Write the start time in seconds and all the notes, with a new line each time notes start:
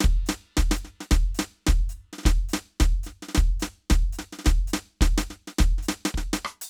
0.01 kick, snare
0.27 snare, hi-hat pedal
0.57 kick, snare
0.72 snare
0.76 hi-hat pedal
0.85 snare
1.01 snare
1.11 kick, snare
1.35 hi-hat pedal
1.39 snare
1.67 kick, snare
1.90 hi-hat pedal
2.13 snare
2.19 snare
2.24 kick, snare
2.27 snare
2.49 hi-hat pedal
2.54 snare
2.80 kick, snare
3.04 snare, hi-hat pedal
3.23 snare
3.29 snare
3.35 kick, snare
3.60 snare, hi-hat pedal
3.90 kick, snare
4.13 hi-hat pedal
4.19 snare
4.33 snare
4.39 snare
4.45 kick, snare
4.68 hi-hat pedal
4.74 snare
5.01 kick, snare
5.18 snare, hi-hat pedal
5.31 snare
5.48 snare
5.59 kick, snare
5.79 snare
5.83 hi-hat pedal
5.89 snare
6.06 snare
6.15 kick, snare
6.34 snare, hi-hat pedal
6.45 cross-stick
6.62 closed hi-hat